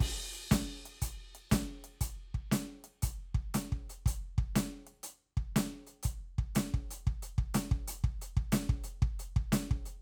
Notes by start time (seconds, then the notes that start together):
0.01 kick, crash
0.34 closed hi-hat
0.51 closed hi-hat, kick, snare
0.86 closed hi-hat
1.02 closed hi-hat, kick
1.35 closed hi-hat
1.50 closed hi-hat, kick, snare, hi-hat pedal
1.84 closed hi-hat
2.01 closed hi-hat, kick
2.35 kick
2.52 closed hi-hat, snare
2.84 closed hi-hat
3.03 closed hi-hat, kick
3.35 kick
3.54 closed hi-hat, snare
3.72 kick
3.90 closed hi-hat
4.06 closed hi-hat, kick
4.38 kick
4.56 closed hi-hat, snare
4.87 closed hi-hat
5.03 closed hi-hat
5.37 kick
5.56 closed hi-hat, snare
5.87 closed hi-hat
6.03 closed hi-hat, kick
6.39 kick
6.55 closed hi-hat, snare
6.74 kick
6.91 closed hi-hat
7.07 kick
7.23 closed hi-hat
7.38 kick
7.54 closed hi-hat, snare
7.72 kick
7.88 closed hi-hat
8.04 kick
8.22 closed hi-hat
8.37 kick
8.52 closed hi-hat, snare
8.70 kick
8.84 closed hi-hat
9.02 kick
9.20 closed hi-hat
9.36 kick
9.53 closed hi-hat, snare
9.71 kick
9.86 closed hi-hat